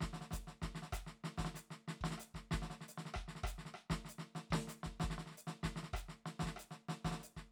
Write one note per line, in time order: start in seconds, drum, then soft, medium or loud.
0.01 kick soft
0.01 snare medium
0.14 snare soft
0.21 snare soft
0.31 kick soft
0.31 snare soft
0.31 hi-hat pedal medium
0.48 snare soft
0.62 kick soft
0.62 snare medium
0.75 snare soft
0.83 snare soft
0.93 kick soft
0.93 cross-stick medium
0.93 hi-hat pedal medium
1.07 snare soft
1.24 snare soft
1.38 kick soft
1.38 snare medium
1.45 snare soft
1.55 snare soft
1.55 hi-hat pedal medium
1.71 snare soft
1.88 snare soft
2.01 kick soft
2.01 snare medium
2.11 snare soft
2.18 cross-stick soft
2.18 hi-hat pedal medium
2.35 kick soft
2.35 snare soft
2.51 kick soft
2.51 snare medium
2.62 snare soft
2.70 snare soft
2.81 snare soft
2.89 snare soft
2.89 hi-hat pedal medium
2.98 snare soft
3.06 snare soft
3.14 kick soft
3.14 cross-stick medium
3.28 snare soft
3.36 snare soft
3.43 kick soft
3.43 cross-stick medium
3.43 snare soft
3.47 hi-hat pedal medium
3.51 kick soft
3.59 snare soft
3.66 snare soft
3.74 cross-stick soft
3.90 kick soft
3.90 snare medium
4.05 snare soft
4.09 hi-hat pedal medium
4.19 snare soft
4.36 snare soft
4.51 kick soft
4.51 snare medium
4.68 snare soft
4.68 hi-hat pedal medium
4.84 kick soft
4.84 snare soft
5.00 kick soft
5.00 snare medium
5.18 snare soft
5.26 snare soft
5.30 snare soft
5.38 hi-hat pedal medium
5.47 snare soft
5.64 kick soft
5.64 snare medium
5.76 snare soft
5.83 snare soft
5.94 kick soft
5.94 cross-stick medium
5.94 hi-hat pedal soft
6.09 snare soft
6.26 snare soft
6.40 kick soft
6.40 snare medium
6.46 snare medium
6.57 cross-stick soft
6.57 hi-hat pedal medium
6.71 snare soft
6.89 snare medium
7.05 kick soft
7.05 snare medium
7.12 snare medium
7.19 snare soft
7.24 hi-hat pedal medium
7.37 kick soft
7.37 snare soft